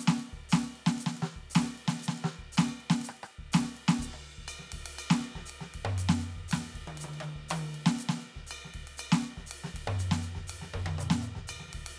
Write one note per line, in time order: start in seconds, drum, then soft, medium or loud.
0.01 hi-hat pedal loud
0.01 ride medium
0.09 snare loud
0.19 hi-hat pedal soft
0.19 ride medium
0.34 kick soft
0.51 snare loud
0.51 hi-hat pedal loud
0.51 ride loud
0.72 hi-hat pedal soft
0.77 ride soft
0.88 snare loud
1.00 hi-hat pedal loud
1.00 ride medium
1.08 snare medium
1.18 ride medium
1.24 snare medium
1.38 kick soft
1.52 hi-hat pedal loud
1.57 snare loud
1.57 ride loud
1.64 snare soft
1.74 hi-hat pedal soft
1.79 ride medium
1.89 snare loud
2.01 hi-hat pedal loud
2.01 ride bell medium
2.10 snare medium
2.19 ride medium
2.24 snare medium
2.24 hi-hat pedal soft
2.40 kick soft
2.54 hi-hat pedal loud
2.59 snare loud
2.59 ride bell loud
2.67 snare soft
2.77 hi-hat pedal soft
2.82 ride soft
2.91 snare loud
3.03 hi-hat pedal loud
3.03 ride medium
3.10 cross-stick medium
3.18 ride soft
3.25 cross-stick medium
3.25 hi-hat pedal soft
3.40 kick soft
3.54 snare loud
3.54 hi-hat pedal loud
3.54 ride loud
3.61 snare soft
3.75 hi-hat pedal soft
3.75 ride medium
3.90 snare loud
4.01 kick soft
4.01 hi-hat pedal loud
4.01 crash medium
4.07 kick soft
4.07 cross-stick soft
4.15 high tom soft
4.40 kick soft
4.49 hi-hat pedal loud
4.49 ride bell loud
4.60 snare soft
4.67 snare soft
4.70 snare soft
4.70 ride loud
4.74 kick soft
4.74 snare soft
4.77 snare soft
4.79 kick soft
4.79 snare soft
4.87 ride loud
5.00 hi-hat pedal loud
5.00 ride bell loud
5.12 snare loud
5.26 ride medium
5.37 kick soft
5.37 snare soft
5.47 hi-hat pedal loud
5.47 ride medium
5.62 snare medium
5.75 kick soft
5.75 ride medium
5.86 floor tom loud
6.00 hi-hat pedal loud
6.00 ride medium
6.10 snare loud
6.22 hi-hat pedal soft
6.22 ride medium
6.38 kick soft
6.50 hi-hat pedal medium
6.50 ride loud
6.54 snare loud
6.76 kick soft
6.76 ride medium
6.89 high tom medium
6.99 hi-hat pedal loud
6.99 ride medium
7.06 high tom medium
7.15 ride bell medium
7.22 hi-hat pedal soft
7.22 high tom medium
7.37 kick soft
7.50 hi-hat pedal loud
7.50 high tom loud
7.50 ride loud
7.73 hi-hat pedal soft
7.73 ride medium
7.87 snare loud
8.00 hi-hat pedal loud
8.00 ride medium
8.10 snare loud
8.21 hi-hat pedal soft
8.21 ride soft
8.37 kick soft
8.37 snare soft
8.48 hi-hat pedal medium
8.52 ride bell loud
8.66 snare soft
8.66 hi-hat pedal soft
8.75 kick soft
8.75 ride medium
8.81 snare soft
8.88 snare soft
8.88 ride medium
8.99 hi-hat pedal loud
8.99 ride bell loud
9.13 snare loud
9.21 hi-hat pedal soft
9.26 ride medium
9.38 kick soft
9.38 snare soft
9.48 hi-hat pedal medium
9.53 ride loud
9.65 snare medium
9.76 kick soft
9.76 ride medium
9.81 kick soft
9.89 floor tom loud
10.00 hi-hat pedal loud
10.00 ride medium
10.13 snare loud
10.23 hi-hat pedal medium
10.23 ride medium
10.37 kick soft
10.37 snare soft
10.49 hi-hat pedal medium
10.49 ride loud
10.63 snare soft
10.75 kick soft
10.75 floor tom loud
10.82 kick soft
10.87 high tom loud
11.00 hi-hat pedal loud
11.00 mid tom medium
11.12 snare loud
11.23 hi-hat pedal medium
11.23 mid tom soft
11.37 kick soft
11.37 snare soft
11.49 hi-hat pedal loud
11.49 ride bell loud
11.61 snare soft
11.69 snare soft
11.69 hi-hat pedal soft
11.75 kick soft
11.75 snare soft
11.75 ride medium
11.80 kick soft
11.80 snare soft
11.86 snare soft
11.86 ride loud